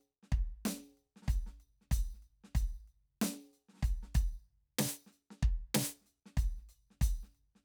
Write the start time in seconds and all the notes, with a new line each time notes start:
0.01 closed hi-hat
0.23 snare
0.32 kick, closed hi-hat
0.65 closed hi-hat, snare
0.97 closed hi-hat
1.16 snare
1.22 snare
1.25 snare
1.28 closed hi-hat, kick, snare
1.46 snare
1.60 closed hi-hat
1.81 snare
1.91 closed hi-hat, kick
2.14 snare
2.22 closed hi-hat
2.44 snare
2.55 closed hi-hat, kick
2.88 closed hi-hat
3.22 closed hi-hat, snare
3.53 closed hi-hat
3.69 snare
3.73 snare
3.76 snare
3.78 snare
3.83 closed hi-hat, kick
4.03 snare
4.15 closed hi-hat, kick
4.79 closed hi-hat, snare
5.06 snare
5.12 closed hi-hat
5.31 snare
5.43 kick
5.75 closed hi-hat, snare
6.01 snare
6.04 closed hi-hat, snare
6.26 snare
6.37 closed hi-hat, kick
6.58 snare
6.69 closed hi-hat
6.91 snare
7.01 closed hi-hat, kick
7.23 snare
7.35 closed hi-hat
7.55 snare